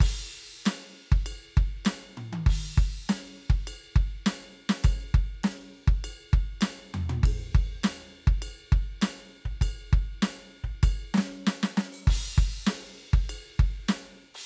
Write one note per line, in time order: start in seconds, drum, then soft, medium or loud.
0.01 kick loud
0.01 ride bell loud
0.01 crash loud
0.66 snare loud
0.66 ride bell loud
1.12 kick loud
1.26 ride bell loud
1.57 kick loud
1.85 snare loud
1.85 ride bell loud
2.18 mid tom loud
2.33 high tom loud
2.47 kick loud
2.47 crash loud
2.78 kick loud
2.78 snare soft
3.10 snare loud
3.10 ride bell loud
3.50 kick loud
3.68 ride bell loud
3.96 kick loud
3.96 snare soft
4.26 snare loud
4.26 ride bell loud
4.70 snare loud
4.84 kick loud
4.84 ride bell loud
5.15 kick loud
5.44 snare loud
5.44 ride loud
5.88 kick loud
6.04 ride bell loud
6.33 kick loud
6.33 snare soft
6.61 snare loud
6.61 ride bell loud
6.94 floor tom loud
7.10 mid tom loud
7.24 kick loud
7.24 ride loud
7.55 kick loud
7.55 snare soft
7.84 snare loud
7.84 ride bell loud
8.28 kick loud
8.28 snare soft
8.42 ride bell loud
8.72 kick loud
8.72 snare soft
9.02 snare loud
9.02 ride bell loud
9.46 kick medium
9.62 kick loud
9.62 ride bell loud
9.93 kick loud
9.93 snare soft
10.23 snare loud
10.23 ride bell loud
10.64 kick medium
10.83 kick loud
10.83 ride bell loud
11.14 snare loud
11.18 snare loud
11.47 snare loud
11.52 hi-hat pedal medium
11.63 snare loud
11.78 snare loud
11.93 open hi-hat medium
12.08 kick loud
12.08 crash loud
12.38 kick loud
12.67 snare loud
12.67 ride loud
13.14 kick loud
13.14 snare soft
13.30 ride bell loud
13.60 kick loud
13.89 snare loud
13.89 ride bell loud
14.35 crash loud